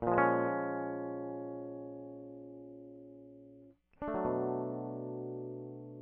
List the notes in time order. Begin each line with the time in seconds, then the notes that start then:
0.03 A#2
0.07 F3
0.12 G#3
0.18 C#4
4.02 D4
4.08 A3
4.15 F#3
4.26 B2
4.32 F2